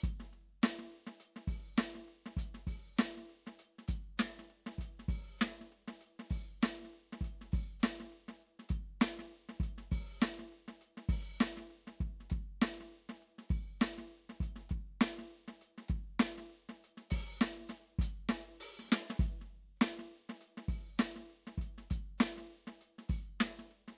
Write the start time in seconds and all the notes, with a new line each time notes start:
0.01 closed hi-hat, kick, hi-hat pedal
0.20 snare
0.33 snare, closed hi-hat
0.62 closed hi-hat, snare, hi-hat pedal
0.79 snare
0.92 closed hi-hat
1.07 snare, closed hi-hat
1.20 closed hi-hat
1.36 snare
1.47 open hi-hat, kick
1.76 closed hi-hat, snare, hi-hat pedal
1.95 snare
2.08 closed hi-hat
2.26 snare, closed hi-hat
2.37 closed hi-hat, kick
2.54 snare
2.67 open hi-hat, kick
2.96 closed hi-hat, snare, hi-hat pedal
3.17 snare
3.29 closed hi-hat
3.46 snare, closed hi-hat
3.59 closed hi-hat
3.79 snare
3.88 closed hi-hat, kick, snare
4.17 closed hi-hat, snare, hi-hat pedal
4.39 snare
4.50 closed hi-hat
4.66 snare, closed hi-hat
4.78 closed hi-hat, kick
4.99 snare
5.08 open hi-hat, kick
5.39 closed hi-hat, snare, hi-hat pedal
5.61 snare
5.72 closed hi-hat
5.88 snare, closed hi-hat
6.01 closed hi-hat
6.19 snare
6.30 open hi-hat, kick
6.62 closed hi-hat, snare, hi-hat pedal
6.84 snare
6.93 closed hi-hat
7.12 snare, closed hi-hat
7.21 closed hi-hat, kick
7.41 snare
7.46 snare
7.52 open hi-hat, kick
7.80 snare, hi-hat pedal
7.84 closed hi-hat
8.00 snare
8.12 closed hi-hat
8.28 snare, closed hi-hat
8.41 closed hi-hat
8.59 snare
8.69 open hi-hat, kick
9.00 closed hi-hat, snare, hi-hat pedal
9.19 snare
9.32 closed hi-hat
9.49 snare
9.60 closed hi-hat, kick
9.78 snare
9.91 open hi-hat, kick
10.20 closed hi-hat, snare, hi-hat pedal
10.39 snare
10.52 closed hi-hat
10.68 snare, closed hi-hat
10.81 closed hi-hat
10.97 snare
11.09 open hi-hat, kick
11.39 closed hi-hat, snare, hi-hat pedal
11.57 snare
11.70 closed hi-hat
11.87 snare, closed hi-hat
12.01 kick, closed hi-hat
12.20 snare
12.30 kick, open hi-hat
12.61 closed hi-hat, snare, hi-hat pedal
12.80 snare
12.92 closed hi-hat
13.09 snare, closed hi-hat
13.22 closed hi-hat
13.38 snare
13.49 kick, open hi-hat
13.80 closed hi-hat, snare, hi-hat pedal
13.98 snare
14.11 closed hi-hat
14.29 snare, closed hi-hat
14.40 closed hi-hat, kick
14.56 snare
14.70 kick, open hi-hat
15.00 closed hi-hat, snare, hi-hat pedal
15.18 snare
15.30 closed hi-hat
15.48 snare, closed hi-hat
15.61 closed hi-hat
15.78 snare
15.88 kick, closed hi-hat
16.20 closed hi-hat, snare, hi-hat pedal
16.38 snare
16.50 closed hi-hat
16.69 snare, closed hi-hat
16.84 closed hi-hat
16.97 snare
17.10 open hi-hat, kick
17.39 closed hi-hat, snare, hi-hat pedal
17.69 closed hi-hat, snare
17.99 closed hi-hat, kick
18.29 closed hi-hat, snare
18.60 open hi-hat
18.79 snare
18.84 snare
18.88 snare, hi-hat pedal
18.92 snare
19.10 snare
19.19 closed hi-hat, kick
19.41 snare
19.51 closed hi-hat
19.76 hi-hat pedal
19.81 closed hi-hat, snare
19.99 snare
20.11 closed hi-hat
20.29 snare, closed hi-hat
20.41 closed hi-hat
20.57 snare
20.68 open hi-hat, kick
20.98 closed hi-hat, snare, hi-hat pedal
21.16 snare
21.30 closed hi-hat
21.47 snare, closed hi-hat
21.58 closed hi-hat, kick
21.78 snare
21.90 open hi-hat, kick
22.18 closed hi-hat, snare, hi-hat pedal
22.38 snare
22.51 closed hi-hat
22.67 snare, closed hi-hat
22.81 closed hi-hat
22.98 snare
23.09 open hi-hat, kick
23.39 closed hi-hat, snare, hi-hat pedal
23.59 snare
23.71 closed hi-hat
23.88 snare, closed hi-hat